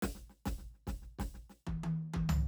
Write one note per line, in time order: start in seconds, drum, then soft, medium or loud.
0.02 kick soft
0.02 snare medium
0.15 snare soft
0.29 snare soft
0.45 kick medium
0.45 snare medium
0.58 snare soft
0.74 snare soft
0.87 kick medium
0.87 snare soft
1.02 snare soft
1.19 kick medium
1.19 snare medium
1.34 snare soft
1.49 snare soft
1.67 kick medium
1.67 high tom medium
1.83 high tom medium
2.14 kick medium
2.14 high tom medium
2.29 floor tom loud